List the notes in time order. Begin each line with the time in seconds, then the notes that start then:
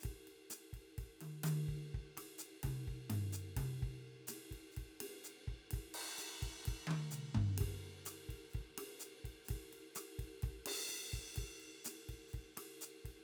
0.01 snare, hi-hat pedal, ride
0.05 kick
0.11 kick
0.28 ride
0.50 snare, hi-hat pedal, ride
0.73 kick, ride
0.99 kick, ride
1.04 kick
1.21 high tom, ride
1.44 hi-hat pedal, high tom, ride
1.69 kick
1.74 kick
1.82 snare
1.85 snare
1.95 kick
2.00 kick
2.17 cross-stick, snare, ride
2.39 hi-hat pedal, ride
2.64 kick, mid tom, ride
2.70 kick
2.88 kick, ride
2.94 kick
3.10 floor tom, ride
3.33 hi-hat pedal, ride
3.57 kick, mid tom, ride
3.63 kick
3.77 hi-hat pedal
3.83 kick
3.89 kick
3.94 snare
4.28 snare, hi-hat pedal, ride
4.52 kick, ride
4.72 hi-hat pedal
4.77 kick, ride
4.83 kick
5.01 snare, ride
5.25 hi-hat pedal
5.48 kick
5.54 kick
5.71 kick, ride
5.80 kick
5.95 crash
6.19 hi-hat pedal, ride
6.43 kick, ride
6.48 kick
6.66 kick, ride
6.74 kick
6.88 high tom
6.91 high tom
7.11 hi-hat pedal, mid tom
7.35 kick, floor tom
7.43 kick
7.58 kick, cross-stick, snare, ride
7.89 snare
8.06 cross-stick, snare, hi-hat pedal, ride
8.29 kick, ride
8.35 kick
8.50 hi-hat pedal, ride
8.55 kick
8.61 kick
8.78 cross-stick, snare, ride
9.00 hi-hat pedal, ride
9.25 kick, ride
9.30 kick
9.45 snare, hi-hat pedal, ride
9.51 kick
9.57 kick
9.73 ride
9.85 snare
9.96 cross-stick, snare, hi-hat pedal, ride
10.19 kick, ride
10.25 kick
10.43 kick, ride
10.50 kick
10.67 ride, crash
10.88 hi-hat pedal, ride
11.13 kick, ride
11.19 kick, snare
11.34 kick, hi-hat pedal, ride
11.44 kick
11.61 ride
11.85 snare, hi-hat pedal, ride
12.09 kick, ride
12.15 kick
12.29 hi-hat pedal
12.34 kick, ride
12.40 kick
12.57 cross-stick, snare, ride
12.82 hi-hat pedal, ride
13.05 kick, ride
13.11 kick